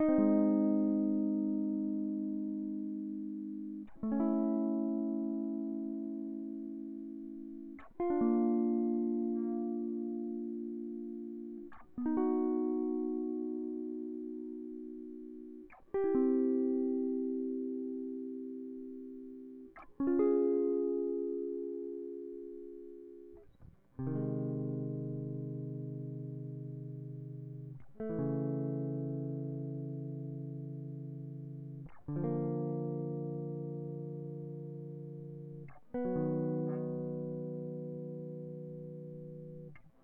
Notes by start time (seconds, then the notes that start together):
0.00 D#4
0.09 C4
0.19 G#3
4.03 A3
4.12 C#4
4.20 E4
8.00 F4
8.10 D4
8.21 A#3
11.98 B3
12.06 D#4
12.17 F#4
15.94 G4
16.04 E4
16.15 C4
20.00 C#4
20.07 F4
20.19 G#4
24.00 C3
24.07 D#3
28.00 A3
28.10 E3
28.20 C#3
32.09 D3
32.17 F3
32.24 A#3
35.40 A4
35.46 A#3
35.94 B3
36.05 F#3
36.16 D#3